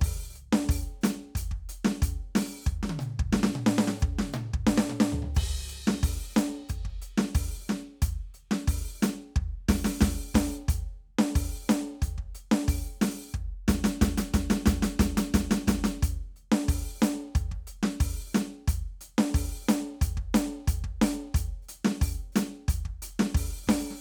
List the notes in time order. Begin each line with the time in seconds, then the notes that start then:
0.01 open hi-hat, kick, hi-hat pedal
0.33 closed hi-hat, hi-hat pedal
0.53 snare
0.69 open hi-hat, kick
1.02 closed hi-hat, snare, hi-hat pedal
1.36 closed hi-hat, kick
1.52 kick
1.69 closed hi-hat
1.85 snare
2.03 closed hi-hat, kick
2.36 open hi-hat, snare
2.67 kick, hi-hat pedal
2.83 snare
2.90 high tom
3.00 hi-hat pedal, mid tom
3.20 kick
3.33 snare, hi-hat pedal
3.44 snare
3.56 mid tom
3.67 snare
3.79 snare
3.88 snare
4.00 kick, hi-hat pedal
4.19 snare
4.26 high tom
4.33 hi-hat pedal, mid tom
4.54 kick
4.67 snare, hi-hat pedal
4.78 snare
4.90 mid tom
5.01 snare
5.13 floor tom
5.35 kick, hi-hat pedal, crash
5.69 closed hi-hat
5.88 snare
6.03 open hi-hat, kick
6.36 closed hi-hat, snare, hi-hat pedal
6.69 closed hi-hat, kick
6.85 kick
6.91 crash
7.02 closed hi-hat
7.18 snare
7.35 open hi-hat, kick
7.58 snare
7.68 snare, hi-hat pedal
8.02 closed hi-hat, kick
8.35 closed hi-hat
8.52 snare
8.68 open hi-hat, kick
9.01 closed hi-hat, snare, hi-hat pedal
9.36 kick
9.69 open hi-hat, kick, snare
9.85 open hi-hat, snare
10.01 open hi-hat, kick, snare
10.35 open hi-hat, kick, snare
10.69 closed hi-hat, kick
11.19 snare
11.36 open hi-hat, kick
11.68 closed hi-hat, snare, hi-hat pedal
12.02 closed hi-hat, kick
12.18 kick
12.35 closed hi-hat
12.52 snare
12.68 open hi-hat, kick
13.02 open hi-hat, snare
13.32 kick, hi-hat pedal
13.68 closed hi-hat, kick, snare
13.85 closed hi-hat, snare
14.02 closed hi-hat, kick, snare
14.18 closed hi-hat, snare
14.34 closed hi-hat, kick, snare
14.51 closed hi-hat, snare
14.66 closed hi-hat, kick, snare
14.83 closed hi-hat, snare
15.00 closed hi-hat, kick, snare
15.18 closed hi-hat, snare
15.34 closed hi-hat, kick, snare
15.51 closed hi-hat, snare
15.68 closed hi-hat, kick, snare
15.84 closed hi-hat, snare
16.03 closed hi-hat, kick
16.37 closed hi-hat
16.52 snare
16.69 open hi-hat, kick
17.00 closed hi-hat, snare, hi-hat pedal
17.36 closed hi-hat, kick
17.52 kick, crash
17.68 closed hi-hat
17.83 snare
18.01 open hi-hat, kick
18.33 closed hi-hat, snare, hi-hat pedal
18.68 closed hi-hat, kick
19.01 closed hi-hat
19.19 snare
19.35 open hi-hat, kick
19.67 closed hi-hat, snare, hi-hat pedal
20.02 closed hi-hat, kick
20.18 kick
20.34 closed hi-hat, snare, hi-hat pedal
20.68 open hi-hat, kick
20.84 kick
21.02 open hi-hat, snare
21.10 hi-hat pedal
21.35 closed hi-hat, kick
21.63 hi-hat pedal
21.69 closed hi-hat
21.85 snare
22.02 open hi-hat, kick
22.33 snare, hi-hat pedal
22.37 closed hi-hat
22.69 closed hi-hat, kick
22.86 kick
23.03 closed hi-hat
23.20 snare
23.35 open hi-hat, kick
23.68 open hi-hat, kick, snare
23.91 snare